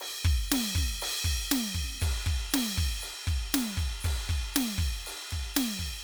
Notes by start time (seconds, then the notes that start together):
0.00 crash
0.25 kick
0.49 snare, hi-hat pedal, crash
0.74 kick, snare, hi-hat pedal
0.99 hi-hat pedal, crash
1.24 kick, crash
1.49 snare, hi-hat pedal, crash
1.74 kick, crash
1.84 snare
1.90 snare
1.94 snare
2.00 kick, hi-hat pedal, crash
2.20 hi-hat pedal
2.26 kick, crash
2.50 snare, hi-hat pedal, crash
2.74 kick, hi-hat pedal, crash
2.82 snare
2.86 snare
2.93 snare
3.00 hi-hat pedal, crash
3.23 hi-hat pedal
3.27 kick, crash
3.52 snare, hi-hat pedal, crash
3.77 kick, crash
4.00 kick, hi-hat pedal
4.05 crash
4.29 kick, crash
4.54 snare, hi-hat pedal, crash
4.78 kick
4.82 crash
5.06 hi-hat pedal, crash
5.31 kick, crash
5.54 snare, hi-hat pedal, crash
5.79 kick, crash